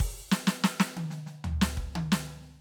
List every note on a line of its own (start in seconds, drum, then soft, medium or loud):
0.00 open hi-hat loud
0.00 kick medium
0.32 snare loud
0.47 snare loud
0.64 snare loud
0.80 snare loud
0.97 high tom loud
1.10 snare soft
1.26 snare soft
1.44 floor tom loud
1.61 snare loud
1.77 kick medium
1.95 high tom loud
2.12 snare loud